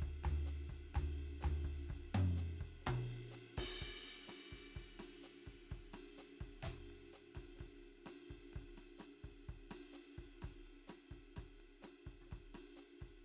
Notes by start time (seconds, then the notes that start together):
0.01 kick, ride
0.09 kick
0.24 floor tom, ride
0.47 hi-hat pedal, ride
0.70 kick, ride
0.75 kick
0.95 kick, floor tom, ride
1.03 kick
1.41 floor tom, hi-hat pedal, ride
1.65 kick, ride
1.70 kick
1.90 kick, ride
1.97 kick
2.15 mid tom, ride
2.37 hi-hat pedal
2.61 kick, mid tom, ride
2.67 kick
2.82 hi-hat pedal
2.87 kick, high tom, ride
2.95 kick
3.12 ride
3.32 hi-hat pedal, ride
3.58 kick, ride, crash
3.82 kick, ride
4.06 ride
4.28 cross-stick, hi-hat pedal, ride
4.52 kick, ride
4.58 kick
4.73 hi-hat pedal, ride
4.77 kick
4.82 kick
5.00 cross-stick, ride
5.24 hi-hat pedal, ride
5.47 kick, ride
5.53 kick
5.72 kick, ride
5.78 kick
5.94 cross-stick, ride
6.19 hi-hat pedal, ride
6.41 kick, ride
6.47 kick
6.62 snare, hi-hat pedal, mid tom, ride
6.67 kick
6.73 kick
6.91 ride
7.14 hi-hat pedal, ride
7.36 kick, cross-stick, ride
7.43 kick
7.56 hi-hat pedal, ride
7.61 kick
7.66 kick
7.83 ride
8.06 cross-stick, hi-hat pedal, ride
8.30 kick, ride
8.36 kick
8.50 hi-hat pedal, ride
8.56 kick
8.62 kick
8.78 cross-stick, ride
8.99 cross-stick, hi-hat pedal, ride
9.25 kick, ride
9.30 kick
9.49 kick, ride
9.55 kick
9.71 cross-stick, snare, ride
9.94 hi-hat pedal, ride
10.19 kick, ride
10.24 kick
10.43 kick, cross-stick, ride
10.50 kick
10.67 ride
10.88 cross-stick, snare, hi-hat pedal, ride
11.12 kick, ride
11.17 kick
11.37 kick, cross-stick, ride
11.44 kick
11.61 ride
11.83 cross-stick, hi-hat pedal, ride
12.07 kick, ride
12.12 kick
12.22 snare
12.27 hi-hat pedal
12.32 kick, cross-stick, ride
12.38 kick
12.55 cross-stick, ride
12.77 hi-hat pedal, ride
13.02 kick, ride
13.08 kick